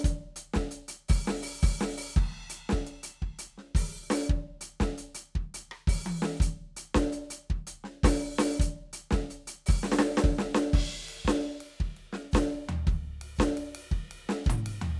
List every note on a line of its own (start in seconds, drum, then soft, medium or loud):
0.01 closed hi-hat loud
0.01 kick loud
0.01 hi-hat pedal medium
0.36 closed hi-hat loud
0.54 kick medium
0.54 snare loud
0.71 closed hi-hat medium
0.88 closed hi-hat loud
1.08 open hi-hat loud
1.08 kick loud
1.27 snare loud
1.42 open hi-hat loud
1.62 open hi-hat loud
1.62 kick loud
1.81 snare loud
1.97 open hi-hat loud
2.13 kick loud
2.13 hi-hat pedal soft
2.13 crash medium
2.50 closed hi-hat loud
2.69 kick medium
2.69 snare loud
2.86 closed hi-hat medium
3.03 closed hi-hat loud
3.22 kick medium
3.39 closed hi-hat loud
3.58 snare medium
3.75 open hi-hat loud
3.75 kick loud
3.75 cross-stick medium
4.10 open hi-hat loud
4.10 snare loud
4.27 kick loud
4.27 hi-hat pedal medium
4.61 closed hi-hat loud
4.80 kick medium
4.80 snare loud
4.98 closed hi-hat medium
5.15 closed hi-hat loud
5.35 kick medium
5.54 closed hi-hat loud
5.71 cross-stick medium
5.87 open hi-hat loud
5.87 kick loud
6.06 high tom loud
6.22 snare loud
6.38 closed hi-hat loud
6.38 kick loud
6.38 hi-hat pedal medium
6.76 closed hi-hat loud
6.94 kick medium
6.94 snare loud
7.12 closed hi-hat medium
7.30 closed hi-hat loud
7.50 kick medium
7.67 closed hi-hat loud
7.84 snare medium
8.03 open hi-hat loud
8.03 kick loud
8.03 snare loud
8.38 open hi-hat loud
8.38 snare loud
8.56 kick loud
8.56 hi-hat pedal soft
8.61 closed hi-hat loud
8.93 closed hi-hat loud
9.11 kick loud
9.11 snare loud
9.30 closed hi-hat medium
9.47 closed hi-hat loud
9.66 open hi-hat loud
9.66 kick loud
9.83 snare loud
9.92 snare loud
9.99 snare loud
10.17 snare loud
10.24 kick loud
10.38 snare loud
10.55 snare loud
10.73 kick loud
10.73 ride loud
11.08 ride medium
11.25 kick medium
11.25 snare loud
11.25 hi-hat pedal medium
11.43 ride soft
11.60 ride medium
11.80 kick medium
11.97 ride soft
12.13 snare medium
12.13 ride soft
12.31 kick loud
12.31 snare loud
12.31 hi-hat pedal medium
12.31 ride medium
12.69 floor tom loud
12.87 kick loud
12.87 ride medium
13.21 ride loud
13.36 kick medium
13.36 hi-hat pedal medium
13.40 snare loud
13.57 ride medium
13.75 ride loud
13.91 kick loud
14.11 ride loud
14.29 snare loud
14.44 kick loud
14.44 hi-hat pedal medium
14.50 mid tom loud
14.66 ride loud
14.81 floor tom loud